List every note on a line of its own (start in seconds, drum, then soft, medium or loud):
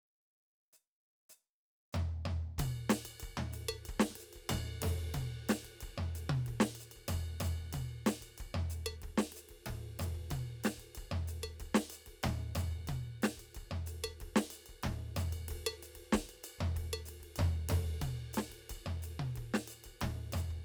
0.73 hi-hat pedal soft
1.29 hi-hat pedal soft
1.92 floor tom loud
1.92 hi-hat pedal soft
2.25 floor tom loud
2.58 kick soft
2.58 mid tom loud
2.58 ride bell medium
2.78 kick soft
2.89 snare loud
2.89 hi-hat pedal medium
2.89 ride bell medium
3.04 kick soft
3.04 ride bell medium
3.20 kick soft
3.20 ride bell medium
3.37 floor tom medium
3.52 hi-hat pedal soft
3.52 ride medium
3.68 kick soft
3.68 percussion loud
3.85 kick soft
3.85 ride bell medium
3.99 snare loud
4.10 snare soft
4.15 ride medium
4.19 hi-hat pedal medium
4.33 kick soft
4.33 ride bell soft
4.49 kick soft
4.49 ride bell loud
4.49 floor tom loud
4.82 floor tom loud
4.82 hi-hat pedal medium
4.82 ride loud
4.97 kick soft
5.14 kick soft
5.14 mid tom medium
5.14 ride bell medium
5.49 snare loud
5.49 hi-hat pedal medium
5.49 ride bell medium
5.63 kick soft
5.63 ride soft
5.81 kick soft
5.81 ride bell medium
5.98 floor tom medium
6.15 hi-hat pedal medium
6.15 ride medium
6.29 kick soft
6.29 mid tom loud
6.46 kick soft
6.46 ride soft
6.60 snare loud
6.75 ride bell soft
6.80 hi-hat pedal medium
6.91 ride bell soft
6.96 kick soft
7.08 floor tom loud
7.08 ride bell medium
7.12 kick soft
7.40 floor tom loud
7.40 hi-hat pedal medium
7.40 ride bell medium
7.58 kick soft
7.73 kick soft
7.73 mid tom medium
7.73 ride bell medium
8.06 snare loud
8.06 hi-hat pedal medium
8.06 ride bell medium
8.21 kick soft
8.21 ride bell soft
8.38 kick soft
8.38 ride bell soft
8.54 floor tom loud
8.70 hi-hat pedal medium
8.70 ride soft
8.85 kick soft
8.85 percussion loud
9.02 kick soft
9.02 ride soft
9.17 snare loud
9.32 hi-hat pedal medium
9.32 ride medium
9.49 kick soft
9.49 ride soft
9.66 kick soft
9.66 ride medium
9.66 floor tom medium
9.99 floor tom medium
9.99 hi-hat pedal medium
9.99 ride medium
10.14 kick soft
10.30 kick soft
10.30 mid tom medium
10.30 ride bell medium
10.63 snare medium
10.63 hi-hat pedal medium
10.63 ride bell medium
10.77 kick soft
10.77 ride soft
10.95 kick soft
10.95 ride bell medium
11.11 floor tom loud
11.27 hi-hat pedal medium
11.27 ride medium
11.42 kick soft
11.42 percussion medium
11.60 kick soft
11.60 ride bell soft
11.74 snare loud
11.90 hi-hat pedal medium
11.90 ride bell medium
12.06 kick soft
12.06 ride soft
12.23 kick soft
12.23 ride bell medium
12.23 floor tom loud
12.55 floor tom loud
12.55 hi-hat pedal medium
12.55 ride bell medium
12.71 kick soft
12.87 kick soft
12.87 mid tom medium
12.87 ride bell medium
13.22 snare medium
13.22 hi-hat pedal medium
13.22 ride medium
13.37 kick soft
13.37 ride bell soft
13.54 kick soft
13.54 ride bell soft
13.71 floor tom medium
13.86 hi-hat pedal medium
13.86 ride medium
14.03 kick soft
14.03 percussion loud
14.20 kick soft
14.20 ride soft
14.36 snare loud
14.50 hi-hat pedal medium
14.50 ride bell medium
14.66 kick soft
14.66 ride bell soft
14.83 kick soft
14.83 ride medium
14.83 floor tom loud
15.16 floor tom loud
15.16 hi-hat pedal medium
15.16 ride bell medium
15.32 kick soft
15.32 ride bell soft
15.48 kick soft
15.48 ride medium
15.66 percussion loud
15.82 hi-hat pedal medium
15.82 ride medium
15.95 kick soft
15.95 ride medium
16.12 kick soft
16.12 snare loud
16.29 ride bell soft
16.43 hi-hat pedal medium
16.43 ride bell medium
16.58 kick soft
16.58 floor tom loud
16.76 kick soft
16.76 ride medium
16.93 percussion loud
17.05 hi-hat pedal medium
17.05 ride medium
17.20 kick soft
17.20 ride soft
17.36 kick soft
17.36 floor tom loud
17.36 ride bell medium
17.69 floor tom loud
17.69 hi-hat pedal medium
17.69 ride loud
17.82 kick soft
18.01 kick soft
18.01 mid tom medium
18.01 ride bell medium
18.33 hi-hat pedal medium
18.33 ride bell medium
18.37 snare medium
18.49 kick soft
18.49 ride soft
18.69 kick soft
18.69 ride bell medium
18.86 floor tom medium
19.02 hi-hat pedal medium
19.02 ride medium
19.19 kick soft
19.19 mid tom medium
19.35 kick soft
19.35 ride soft
19.54 snare medium
19.67 hi-hat pedal medium
19.67 ride bell medium
19.84 kick soft
19.84 ride bell soft
20.01 kick soft
20.01 ride medium
20.01 floor tom loud
20.32 floor tom loud
20.32 ride bell medium
20.37 hi-hat pedal medium
20.50 kick soft